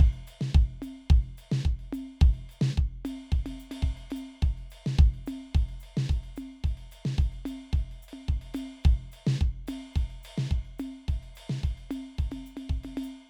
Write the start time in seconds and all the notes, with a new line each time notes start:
0.01 kick, ride
0.14 ride
0.29 hi-hat pedal, ride bell
0.43 snare
0.56 kick, ride
0.84 hi-hat pedal, high tom, ride bell
1.12 kick, ride
1.24 ride
1.39 hi-hat pedal, ride bell
1.53 snare
1.67 kick
1.81 ride
1.94 hi-hat pedal, high tom, ride bell
2.22 kick, ride
2.35 ride
2.51 hi-hat pedal, ride bell
2.63 snare
2.79 kick, hi-hat pedal
3.07 hi-hat pedal, high tom, ride bell
3.34 kick, ride
3.48 high tom, ride bell
3.61 hi-hat pedal
3.73 high tom, ride bell
3.84 kick, hi-hat pedal
3.98 ride
4.12 high tom, ride bell
4.17 hi-hat pedal
4.44 kick, ride
4.59 ride
4.72 hi-hat pedal, ride bell
4.88 snare
5.00 kick, ride
5.15 ride
5.28 hi-hat pedal, high tom, ride bell
5.56 kick, ride
5.70 ride
5.82 hi-hat pedal, ride bell
5.99 snare
6.11 kick, ride
6.25 ride
6.38 hi-hat pedal, high tom, ride bell
6.66 kick, ride
6.79 ride
6.93 hi-hat pedal, ride
7.07 snare
7.20 kick, ride
7.34 ride
7.47 hi-hat pedal, high tom, ride
7.75 kick, ride
7.93 ride
8.04 hi-hat pedal
8.10 ride
8.15 high tom
8.30 kick, hi-hat pedal
8.43 ride
8.56 hi-hat pedal, high tom, ride bell
8.84 kick, hi-hat pedal, ride
9.13 hi-hat pedal, ride
9.28 snare
9.40 kick, hi-hat pedal
9.68 kick, hi-hat pedal, high tom, ride bell
9.95 kick, hi-hat pedal, ride
10.12 ride
10.25 hi-hat pedal, ride
10.39 snare
10.51 kick, hi-hat pedal
10.66 ride
10.80 hi-hat pedal, high tom, ride bell
11.10 kick, ride
11.24 ride
11.37 hi-hat pedal, ride bell
11.51 snare
11.64 kick, hi-hat pedal, ride
11.79 ride
11.92 hi-hat pedal, high tom, ride bell
12.19 kick, hi-hat pedal, ride
12.33 high tom, ride bell
12.48 hi-hat pedal
12.59 high tom, ride bell
12.71 kick, hi-hat pedal
12.85 high tom, ride bell
12.99 high tom, ride bell
13.05 hi-hat pedal